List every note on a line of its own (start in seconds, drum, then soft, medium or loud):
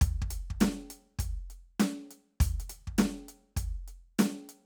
0.01 kick loud
0.01 closed hi-hat loud
0.22 kick medium
0.30 closed hi-hat loud
0.50 kick medium
0.60 snare loud
0.60 closed hi-hat loud
0.90 closed hi-hat loud
1.19 kick medium
1.19 closed hi-hat loud
1.50 closed hi-hat medium
1.80 snare loud
1.80 closed hi-hat loud
2.11 closed hi-hat medium
2.40 closed hi-hat loud
2.40 kick loud
2.60 closed hi-hat medium
2.69 closed hi-hat loud
2.87 kick medium
2.98 snare loud
2.98 closed hi-hat loud
3.28 closed hi-hat medium
3.56 kick medium
3.56 closed hi-hat loud
3.88 closed hi-hat medium
4.19 closed hi-hat loud
4.19 snare loud
4.49 closed hi-hat medium